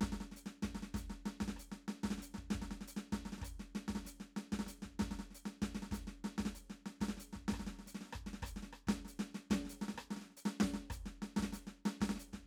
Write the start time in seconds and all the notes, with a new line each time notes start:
0.01 kick, snare
0.12 snare
0.20 snare
0.32 snare
0.36 hi-hat pedal
0.46 snare
0.63 kick, snare
0.75 snare
0.83 snare
0.94 kick, snare, hi-hat pedal
1.10 snare
1.26 snare
1.40 kick, snare
1.48 snare
1.57 cross-stick, hi-hat pedal
1.72 snare
1.88 snare
2.04 kick, snare
2.11 snare
2.18 snare
2.22 hi-hat pedal
2.34 kick, snare
2.51 snare
2.55 kick
2.62 snare
2.71 snare
2.88 hi-hat pedal
2.97 snare
3.12 kick, snare
3.25 snare
3.32 snare
3.38 kick, snare
3.43 cross-stick, hi-hat pedal
3.60 snare
3.75 snare
3.88 kick, snare
3.95 snare
4.05 snare, hi-hat pedal
4.20 snare
4.37 snare
4.52 kick, snare
4.59 snare
4.67 snare, hi-hat pedal
4.82 kick, snare
4.99 kick, snare
5.11 snare
5.19 snare
5.31 snare
5.35 hi-hat pedal
5.46 snare
5.62 kick, snare
5.75 snare
5.82 snare
5.91 kick, hi-hat pedal
6.07 snare
6.24 snare
6.38 kick, snare
6.45 snare
6.55 cross-stick, hi-hat pedal
6.70 snare
6.86 snare
7.01 kick, snare
7.09 snare
7.17 snare, hi-hat pedal
7.33 kick, snare
7.48 kick, snare
7.54 cross-stick
7.60 snare
7.67 snare
7.73 snare
7.79 snare
7.86 snare, hi-hat pedal
7.95 snare
8.01 snare
8.05 snare
8.13 kick, cross-stick
8.26 snare
8.33 snare
8.39 kick, cross-stick, snare
8.46 hi-hat pedal
8.56 snare
8.63 snare
8.73 cross-stick
8.87 kick, snare
9.05 snare, hi-hat pedal
9.19 snare
9.35 snare
9.50 kick, snare
9.65 snare
9.70 snare, hi-hat pedal
9.82 snare
9.88 snare
9.94 kick, snare
9.98 cross-stick
10.11 snare
10.17 snare
10.21 snare
10.30 snare
10.37 cross-stick, hi-hat pedal
10.46 snare
10.60 kick, snare
10.74 snare
10.90 kick, cross-stick, hi-hat pedal
11.06 snare
11.22 snare
11.37 kick, snare
11.43 snare
11.53 snare, hi-hat pedal
11.67 snare
11.86 snare
12.01 kick, snare
12.09 snare
12.16 snare, hi-hat pedal
12.33 kick, snare